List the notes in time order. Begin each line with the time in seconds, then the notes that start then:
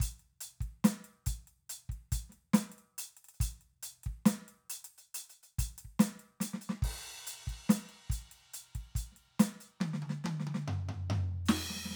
0.01 closed hi-hat, kick
0.20 closed hi-hat
0.41 closed hi-hat
0.61 kick, closed hi-hat
0.85 closed hi-hat, snare
1.05 closed hi-hat
1.27 closed hi-hat, kick
1.48 closed hi-hat
1.70 closed hi-hat
1.90 kick, closed hi-hat
2.13 closed hi-hat, kick
2.30 snare, closed hi-hat
2.54 closed hi-hat, snare
2.72 closed hi-hat
2.79 closed hi-hat
2.99 closed hi-hat
3.17 closed hi-hat
3.25 closed hi-hat
3.29 closed hi-hat
3.35 closed hi-hat
3.41 closed hi-hat, kick
3.62 closed hi-hat
3.84 closed hi-hat
4.04 kick, closed hi-hat
4.26 closed hi-hat, snare
4.49 closed hi-hat
4.71 closed hi-hat
4.85 closed hi-hat
4.99 closed hi-hat
5.15 closed hi-hat
5.30 closed hi-hat
5.44 closed hi-hat
5.59 closed hi-hat, kick
5.79 closed hi-hat
5.85 kick
6.00 closed hi-hat, snare
6.20 closed hi-hat
6.41 closed hi-hat, snare
6.54 snare
6.62 closed hi-hat
6.70 snare
6.83 kick, crash
7.03 closed hi-hat
7.28 closed hi-hat
7.48 kick, closed hi-hat
7.70 closed hi-hat, snare
7.90 closed hi-hat
8.11 closed hi-hat, kick
8.32 closed hi-hat
8.54 closed hi-hat
8.76 kick, closed hi-hat
8.96 closed hi-hat, kick
9.12 snare
9.17 closed hi-hat
9.40 closed hi-hat, snare
9.61 closed hi-hat
9.81 snare, high tom
9.94 snare
10.03 high tom
10.10 snare
10.25 snare, high tom
10.41 snare
10.48 high tom
10.55 snare
10.69 floor tom
10.90 floor tom
11.11 snare, floor tom
11.46 snare, hi-hat pedal, crash
11.71 snare
11.77 snare
11.86 snare
11.91 snare